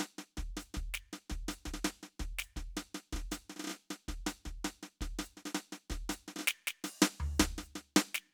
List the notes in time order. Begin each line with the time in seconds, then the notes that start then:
0.01 snare
0.18 snare
0.37 kick, snare
0.56 snare, hi-hat pedal
0.74 kick, snare
0.94 snare
1.13 snare
1.29 kick, snare
1.48 snare, hi-hat pedal
1.65 kick, snare
1.73 snare
1.84 snare
2.03 snare
2.19 kick, snare
2.38 snare, hi-hat pedal
2.56 kick, snare
2.77 snare
2.94 snare
3.12 kick, snare
3.16 snare
3.31 snare, hi-hat pedal
3.49 snare
3.56 snare
3.59 snare
3.64 snare
3.67 snare
3.69 snare
3.90 snare
4.08 kick, snare
4.26 snare, hi-hat pedal
4.45 kick, snare
4.64 snare, hi-hat pedal
4.83 snare
5.01 kick, snare
5.19 snare
5.23 hi-hat pedal
5.37 snare
5.45 snare
5.54 snare
5.72 snare, hi-hat pedal
5.90 kick, snare
5.91 snare
6.09 snare, hi-hat pedal
6.28 snare
6.36 snare
6.39 snare
6.40 snare
6.47 snare
6.67 snare
6.84 snare, hi-hat pedal
7.02 snare
7.20 floor tom
7.35 hi-hat pedal
7.39 kick, snare
7.58 snare
7.62 hi-hat pedal
7.75 snare
7.96 snare
8.14 snare